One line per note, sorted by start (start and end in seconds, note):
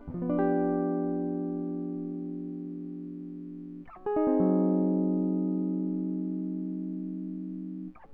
0.15 3.85 F3
0.22 2.99 B3
0.29 3.86 D4
0.38 3.29 G4
4.06 6.68 G#4
4.16 7.94 D#4
4.27 7.92 C4
4.40 7.92 F#3